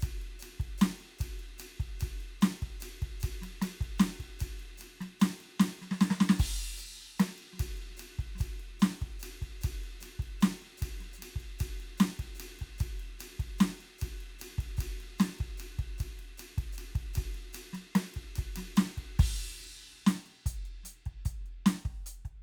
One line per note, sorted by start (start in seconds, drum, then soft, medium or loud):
0.01 kick medium
0.01 hi-hat pedal medium
0.01 ride loud
0.22 ride soft
0.40 hi-hat pedal medium
0.40 ride loud
0.61 kick medium
0.61 ride medium
0.79 snare loud
0.79 hi-hat pedal medium
0.79 ride loud
1.01 ride soft
1.19 kick medium
1.19 hi-hat pedal medium
1.19 ride loud
1.40 ride medium
1.59 hi-hat pedal medium
1.59 ride loud
1.81 kick medium
1.81 ride medium
2.00 kick medium
2.00 hi-hat pedal medium
2.00 ride loud
2.12 snare soft
2.21 ride soft
2.42 snare loud
2.42 hi-hat pedal medium
2.42 ride loud
2.63 kick medium
2.63 ride soft
2.81 hi-hat pedal medium
2.81 ride loud
3.03 kick medium
3.03 ride medium
3.21 kick medium
3.21 hi-hat pedal medium
3.21 ride loud
3.43 snare soft
3.43 ride medium
3.63 snare loud
3.63 hi-hat pedal medium
3.63 ride loud
3.82 kick medium
3.82 ride medium
3.99 snare loud
3.99 hi-hat pedal medium
3.99 ride loud
4.21 kick soft
4.21 ride medium
4.40 kick medium
4.40 hi-hat pedal medium
4.40 ride loud
4.60 ride soft
4.78 snare soft
4.78 hi-hat pedal medium
4.78 ride loud
5.01 snare medium
5.01 ride medium
5.21 snare loud
5.21 hi-hat pedal medium
5.21 ride loud
5.41 ride medium
5.61 snare loud
5.61 hi-hat pedal medium
5.61 ride loud
5.82 snare medium
5.92 snare loud
6.01 snare loud
6.01 hi-hat pedal medium
6.11 snare loud
6.21 snare loud
6.30 snare loud
6.39 kick medium
6.39 hi-hat pedal medium
6.39 crash loud
6.78 hi-hat pedal medium
7.20 snare loud
7.20 hi-hat pedal medium
7.20 ride loud
7.39 ride medium
7.54 snare soft
7.58 kick medium
7.58 snare soft
7.58 ride loud
7.61 snare soft
7.61 hi-hat pedal medium
7.63 snare soft
7.69 snare soft
7.78 ride soft
7.91 snare soft
7.98 hi-hat pedal medium
7.98 ride loud
8.20 kick medium
8.20 ride soft
8.36 snare soft
8.36 hi-hat pedal medium
8.41 kick medium
8.41 ride loud
8.61 ride soft
8.80 snare loud
8.80 hi-hat pedal medium
8.80 ride loud
9.02 kick medium
9.02 ride soft
9.20 hi-hat pedal medium
9.20 ride loud
9.43 kick soft
9.43 ride soft
9.62 kick medium
9.62 hi-hat pedal medium
9.62 ride loud
9.85 ride soft
10.01 snare soft
10.01 hi-hat pedal medium
10.01 ride loud
10.20 kick soft
10.20 ride medium
10.41 snare loud
10.41 hi-hat pedal medium
10.41 ride loud
10.63 ride soft
10.78 snare soft
10.78 hi-hat pedal medium
10.83 kick medium
10.83 ride loud
11.01 snare soft
11.01 ride medium
11.14 hi-hat pedal medium
11.19 snare soft
11.19 ride loud
11.37 kick soft
11.41 ride medium
11.60 kick medium
11.60 hi-hat pedal medium
11.60 ride loud
11.81 ride medium
11.99 snare loud
11.99 hi-hat pedal medium
11.99 ride loud
12.20 kick medium
12.20 ride medium
12.36 hi-hat pedal medium
12.41 ride loud
12.60 kick soft
12.60 ride medium
12.79 kick medium
12.79 hi-hat pedal medium
12.79 ride loud
13.01 ride medium
13.20 hi-hat pedal medium
13.20 ride loud
13.40 kick medium
13.40 ride medium
13.59 snare loud
13.59 hi-hat pedal medium
13.59 ride loud
13.82 ride medium
13.99 kick medium
13.99 hi-hat pedal medium
13.99 ride loud
14.04 snare soft
14.21 ride soft
14.40 hi-hat pedal medium
14.40 ride loud
14.59 kick medium
14.59 ride medium
14.78 kick medium
14.78 hi-hat pedal medium
14.78 ride loud
15.01 ride medium
15.19 snare loud
15.19 hi-hat pedal medium
15.19 ride loud
15.40 kick medium
15.40 ride medium
15.58 hi-hat pedal medium
15.58 ride loud
15.80 kick medium
15.80 ride medium
15.99 kick medium
15.99 hi-hat pedal medium
15.99 ride loud
16.20 ride medium
16.38 hi-hat pedal medium
16.38 ride loud
16.59 kick medium
16.59 ride medium
16.73 hi-hat pedal medium
16.79 ride loud
16.96 kick medium
16.96 ride medium
17.14 kick medium
17.14 hi-hat pedal medium
17.14 ride loud
17.35 ride medium
17.54 hi-hat pedal medium
17.54 ride loud
17.74 snare medium
17.74 ride bell medium
17.96 snare loud
17.96 hi-hat pedal medium
17.96 ride loud
18.15 kick soft
18.15 ride medium
18.37 kick medium
18.37 hi-hat pedal medium
18.37 ride loud
18.57 snare medium
18.57 ride loud
18.77 snare loud
18.77 hi-hat pedal medium
18.77 ride loud
18.98 kick soft
18.98 ride medium
19.20 kick loud
19.20 crash loud
19.60 hi-hat pedal soft
20.07 closed hi-hat medium
20.07 snare loud
20.27 closed hi-hat soft
20.47 closed hi-hat loud
20.47 kick medium
20.66 closed hi-hat soft
20.84 closed hi-hat loud
20.84 snare soft
21.07 kick soft
21.07 closed hi-hat soft
21.26 closed hi-hat medium
21.26 kick medium
21.42 snare soft
21.47 closed hi-hat soft
21.67 closed hi-hat loud
21.67 snare loud
21.86 kick medium
21.86 closed hi-hat soft
22.07 closed hi-hat loud
22.26 kick soft
22.26 closed hi-hat soft